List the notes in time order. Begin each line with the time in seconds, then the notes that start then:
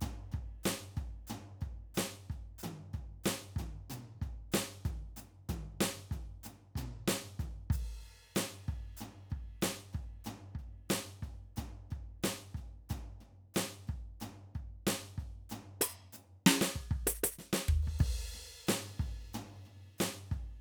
0.01 kick, floor tom, hi-hat pedal
0.32 kick, floor tom
0.64 snare, floor tom, hi-hat pedal
0.97 kick, floor tom
1.27 floor tom, hi-hat pedal
1.61 kick, floor tom
1.94 snare, floor tom, hi-hat pedal
2.30 kick, floor tom
2.58 hi-hat pedal
2.63 floor tom, high tom
2.94 kick, floor tom
3.24 snare, floor tom, hi-hat pedal
3.56 kick, floor tom, high tom
3.90 floor tom, hi-hat pedal, mid tom
4.22 kick, floor tom
4.52 snare, floor tom, hi-hat pedal
4.85 kick, floor tom, high tom
5.17 floor tom, hi-hat pedal
5.49 kick, floor tom, high tom
5.81 snare, floor tom, hi-hat pedal
6.11 kick, floor tom, high tom
6.44 floor tom, hi-hat pedal
6.76 kick, floor tom, mid tom
7.08 snare, floor tom, hi-hat pedal
7.40 kick, floor tom, high tom
7.70 kick, hi-hat pedal, crash
8.35 snare, floor tom, hi-hat pedal
8.68 kick, floor tom
8.97 floor tom, hi-hat pedal
9.30 kick, floor tom
9.62 snare, floor tom, hi-hat pedal
9.93 kick, floor tom
10.24 floor tom, hi-hat pedal
10.55 kick, floor tom
10.90 snare, floor tom, hi-hat pedal
11.23 kick, floor tom
11.56 kick, floor tom, hi-hat pedal
11.91 kick, floor tom
12.23 snare, floor tom, hi-hat pedal
12.55 kick, floor tom
12.89 kick, floor tom, hi-hat pedal
12.96 floor tom
13.21 floor tom
13.54 snare, floor tom, hi-hat pedal
13.87 kick, floor tom
14.20 floor tom, hi-hat pedal
14.55 kick, floor tom
14.87 snare, floor tom, hi-hat pedal
15.18 kick, floor tom
15.50 floor tom, hi-hat pedal
15.81 high tom, floor tom
16.13 floor tom, hi-hat pedal
16.47 snare
16.61 snare
16.76 kick
16.91 kick
17.07 high tom
17.24 high tom
17.39 snare
17.53 snare
17.69 mid tom
17.83 crash
17.87 kick
17.99 kick, crash
18.34 floor tom
18.67 snare, floor tom, hi-hat pedal
19.00 kick, floor tom
19.34 floor tom, hi-hat pedal
19.65 floor tom
19.98 snare, floor tom, hi-hat pedal
20.32 kick, floor tom